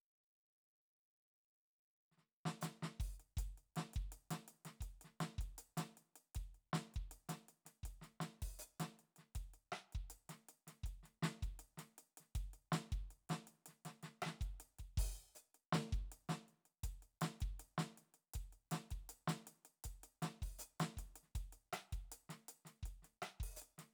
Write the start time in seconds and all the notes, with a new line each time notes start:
2.11 snare
2.18 snare
2.45 snare
2.61 snare, hi-hat pedal
2.82 snare
3.00 kick, open hi-hat
3.20 closed hi-hat
3.37 kick, closed hi-hat
3.58 closed hi-hat
3.76 snare, closed hi-hat
3.93 kick, closed hi-hat
4.12 closed hi-hat
4.30 snare, closed hi-hat
4.48 closed hi-hat
4.65 snare, closed hi-hat
4.80 kick, closed hi-hat
5.01 snare, closed hi-hat
5.20 snare, closed hi-hat
5.38 kick, closed hi-hat
5.58 closed hi-hat
5.77 snare, closed hi-hat
5.97 closed hi-hat
6.16 closed hi-hat
6.35 kick, closed hi-hat
6.54 closed hi-hat
6.73 snare, closed hi-hat
6.94 kick, closed hi-hat
7.11 closed hi-hat
7.29 snare, closed hi-hat
7.48 closed hi-hat
7.65 snare, closed hi-hat
7.83 kick, closed hi-hat
8.01 snare, closed hi-hat
8.20 snare, closed hi-hat
8.42 kick, open hi-hat
8.59 closed hi-hat, hi-hat pedal
8.80 snare, closed hi-hat
8.99 closed hi-hat
9.16 snare, closed hi-hat
9.35 kick, closed hi-hat
9.54 closed hi-hat
9.72 cross-stick, closed hi-hat
9.92 kick, closed hi-hat
10.10 closed hi-hat
10.29 snare, closed hi-hat
10.49 closed hi-hat
10.67 snare, closed hi-hat
10.83 kick, closed hi-hat
11.03 snare, closed hi-hat
11.23 snare, closed hi-hat
11.42 kick, closed hi-hat
11.59 closed hi-hat
11.77 snare, closed hi-hat
11.98 closed hi-hat
12.17 snare, closed hi-hat
12.35 kick, closed hi-hat
12.53 closed hi-hat
12.72 snare, closed hi-hat
12.92 kick, closed hi-hat
13.10 closed hi-hat
13.29 snare, closed hi-hat
13.47 closed hi-hat
13.66 snare, closed hi-hat
13.85 snare, closed hi-hat
14.03 snare, closed hi-hat
14.22 cross-stick, closed hi-hat
14.26 snare
14.41 kick, closed hi-hat
14.60 closed hi-hat
14.79 kick, closed hi-hat
14.97 open hi-hat, kick
15.35 closed hi-hat, hi-hat pedal
15.54 closed hi-hat
15.73 snare, closed hi-hat
15.92 kick, closed hi-hat
16.12 closed hi-hat
16.29 snare, closed hi-hat
16.48 closed hi-hat
16.65 closed hi-hat
16.83 kick, closed hi-hat
17.02 closed hi-hat
17.21 snare, closed hi-hat
17.40 kick, closed hi-hat
17.60 closed hi-hat
17.78 snare, closed hi-hat
17.98 closed hi-hat
18.14 closed hi-hat
18.34 kick, closed hi-hat
18.53 closed hi-hat
18.71 snare, closed hi-hat
18.91 kick, closed hi-hat
19.09 closed hi-hat
19.28 snare, closed hi-hat
19.47 closed hi-hat
19.65 closed hi-hat
19.84 kick, closed hi-hat
20.03 closed hi-hat
20.22 snare, closed hi-hat
20.42 kick, open hi-hat
20.59 closed hi-hat, hi-hat pedal
20.80 snare, closed hi-hat
20.97 kick, closed hi-hat
21.16 closed hi-hat
21.23 snare
21.35 kick, closed hi-hat
21.53 closed hi-hat
21.73 cross-stick, closed hi-hat
21.92 kick, closed hi-hat
22.12 closed hi-hat
22.29 snare, closed hi-hat
22.48 closed hi-hat
22.65 snare, closed hi-hat
22.83 kick, closed hi-hat
23.02 snare, closed hi-hat
23.22 cross-stick, closed hi-hat
23.40 kick, open hi-hat
23.56 hi-hat pedal
23.62 closed hi-hat
23.78 snare, closed hi-hat